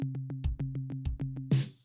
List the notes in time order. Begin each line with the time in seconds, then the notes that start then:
0.00 floor tom, hi-hat pedal, high tom
0.15 floor tom, high tom
0.30 floor tom, high tom
0.44 kick
0.60 floor tom, high tom
0.75 floor tom, high tom
0.90 floor tom, high tom
1.05 kick
1.20 floor tom, high tom
1.36 floor tom, high tom
1.51 snare, crash